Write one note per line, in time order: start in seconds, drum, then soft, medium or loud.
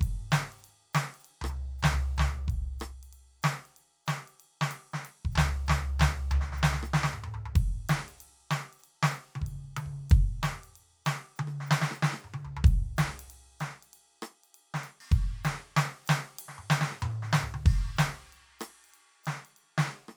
0.01 kick medium
0.01 ride medium
0.31 snare loud
0.31 hi-hat pedal medium
0.31 ride medium
0.52 ride soft
0.58 hi-hat pedal soft
0.64 ride soft
0.93 snare loud
0.93 hi-hat pedal medium
0.93 ride medium
1.14 ride soft
1.20 hi-hat pedal medium
1.25 ride soft
1.42 cross-stick medium
1.42 floor tom loud
1.47 floor tom soft
1.47 hi-hat pedal medium
1.79 hi-hat pedal medium
1.83 snare loud
1.83 floor tom loud
1.93 floor tom loud
2.16 snare medium
2.16 floor tom loud
2.16 hi-hat pedal soft
2.44 hi-hat pedal soft
2.48 kick medium
2.48 ride soft
2.79 cross-stick medium
2.79 hi-hat pedal medium
2.79 ride soft
3.03 ride soft
3.13 ride soft
3.42 snare loud
3.42 hi-hat pedal medium
3.42 ride medium
3.66 ride soft
3.77 ride soft
4.06 snare medium
4.06 hi-hat pedal medium
4.06 ride medium
4.28 ride soft
4.40 ride soft
4.61 snare loud
4.61 hi-hat pedal soft
4.71 ride medium
4.92 snare medium
4.92 hi-hat pedal soft
5.05 ride medium
5.25 kick medium
5.32 floor tom loud
5.32 hi-hat pedal medium
5.38 snare loud
5.66 snare loud
5.66 floor tom loud
5.66 hi-hat pedal medium
5.99 snare loud
5.99 floor tom loud
5.99 hi-hat pedal medium
6.31 floor tom loud
6.31 hi-hat pedal medium
6.41 snare medium
6.52 snare medium
6.57 hi-hat pedal medium
6.63 snare loud
6.73 snare medium
6.83 cross-stick medium
6.83 hi-hat pedal medium
6.94 snare loud
7.04 snare medium
7.08 hi-hat pedal soft
7.13 mid tom medium
7.24 mid tom medium
7.34 floor tom medium
7.46 floor tom medium
7.56 kick loud
7.56 ride medium
7.89 snare loud
7.89 hi-hat pedal medium
7.89 ride medium
8.08 ride soft
8.17 hi-hat pedal soft
8.17 ride medium
8.51 snare loud
8.51 hi-hat pedal medium
8.51 ride medium
8.73 ride soft
8.79 hi-hat pedal soft
8.84 ride soft
9.03 snare loud
9.11 hi-hat pedal medium
9.11 ride soft
9.36 high tom loud
9.42 kick medium
9.47 ride soft
9.77 high tom loud
9.77 ride medium
9.86 kick soft
10.10 kick loud
10.10 ride medium
10.43 snare medium
10.43 hi-hat pedal medium
10.43 ride medium
10.64 ride soft
10.76 ride soft
11.05 snare loud
11.05 hi-hat pedal medium
11.05 ride medium
11.36 hi-hat pedal medium
11.36 high tom loud
11.48 cross-stick soft
11.61 snare soft
11.67 hi-hat pedal medium
11.71 snare loud
11.82 snare loud
11.91 cross-stick medium
11.95 hi-hat pedal medium
12.03 snare loud
12.13 cross-stick medium
12.19 hi-hat pedal soft
12.24 mid tom soft
12.34 high tom loud
12.45 floor tom medium
12.57 floor tom medium
12.64 kick loud
12.64 ride medium
12.96 snare loud
12.96 hi-hat pedal soft
12.96 ride medium
13.19 ride medium
13.30 ride medium
13.60 snare medium
13.60 hi-hat pedal medium
13.60 ride soft
13.83 ride soft
13.93 ride soft
14.22 cross-stick medium
14.22 hi-hat pedal soft
14.22 ride soft
14.44 ride soft
14.55 ride soft
14.74 snare medium
14.74 hi-hat pedal soft
14.84 ride soft
15.01 crash medium
15.12 kick loud
15.12 ride soft
15.44 snare loud
15.44 hi-hat pedal medium
15.44 ride medium
15.77 snare loud
15.77 ride medium
16.05 hi-hat pedal medium
16.05 ride medium
16.09 snare loud
16.38 hi-hat pedal medium
16.38 ride loud
16.49 snare soft
16.58 mid tom soft
16.70 snare loud
16.70 hi-hat pedal medium
16.81 snare loud
16.92 cross-stick soft
17.00 hi-hat pedal medium
17.00 mid tom loud
17.11 cross-stick soft
17.23 snare soft
17.31 snare loud
17.31 hi-hat pedal soft
17.42 floor tom medium
17.54 high tom medium
17.66 kick loud
17.66 crash medium
17.96 snare loud
17.96 hi-hat pedal medium
17.96 ride medium
18.33 ride soft
18.59 cross-stick medium
18.59 hi-hat pedal medium
18.59 ride medium
18.84 hi-hat pedal soft
18.84 ride soft
18.94 ride soft
19.24 snare medium
19.24 hi-hat pedal medium
19.24 ride soft
19.45 ride soft
19.57 ride soft
19.78 snare loud
19.78 hi-hat pedal soft
20.09 cross-stick medium